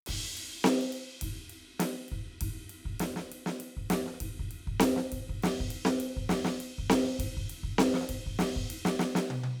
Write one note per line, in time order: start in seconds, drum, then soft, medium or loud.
0.06 kick medium
0.06 ride loud
0.23 ride soft
0.37 ride medium
0.64 snare loud
0.64 ride medium
0.81 ride soft
0.92 ride medium
1.21 kick medium
1.21 ride loud
1.50 ride medium
1.79 snare loud
1.79 ride loud
2.08 kick medium
2.08 ride soft
2.41 kick medium
2.41 ride loud
2.69 ride medium
2.85 kick medium
3.00 snare loud
3.00 ride loud
3.16 snare medium
3.32 ride medium
3.46 snare loud
3.60 ride medium
3.77 kick soft
3.90 snare loud
3.90 ride loud
4.06 snare soft
4.13 snare soft
4.20 kick medium
4.20 ride medium
4.39 kick medium
4.51 ride medium
4.67 kick medium
4.80 snare loud
4.80 ride loud
4.96 snare medium
5.12 kick soft
5.12 ride medium
5.29 kick medium
5.42 snare loud
5.42 ride medium
5.60 kick medium
5.71 ride medium
5.85 snare loud
6.00 ride medium
6.17 kick medium
6.29 snare loud
6.29 ride medium
6.45 snare loud
6.60 ride medium
6.78 kick medium
6.90 snare loud
6.90 ride medium
7.04 snare soft
7.08 snare soft
7.13 snare soft
7.19 kick medium
7.19 ride loud
7.37 kick medium
7.50 ride medium
7.63 kick medium
7.78 snare loud
7.78 ride medium
7.94 snare medium
8.01 snare medium
8.09 kick soft
8.09 ride medium
8.26 kick medium
8.39 snare loud
8.39 ride medium
8.56 kick medium
8.70 ride medium
8.76 kick soft
8.85 snare loud
8.99 snare loud
9.15 snare loud
9.30 high tom loud
9.44 high tom loud